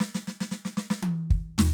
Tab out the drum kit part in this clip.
SD |oooooooo----o---|
T1 |--------o-------|
FT |------------o---|
BD |----------o-----|